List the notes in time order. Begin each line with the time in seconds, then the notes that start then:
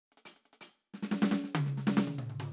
0.12 closed hi-hat
0.17 closed hi-hat
0.25 closed hi-hat
0.36 closed hi-hat
0.45 closed hi-hat
0.53 closed hi-hat
0.61 closed hi-hat
0.94 snare
1.02 snare
1.11 snare
1.22 snare
1.31 snare
1.44 snare
1.55 high tom
1.66 snare
1.77 snare
1.87 snare
2.07 high tom
2.18 mid tom
2.29 high tom
2.40 high tom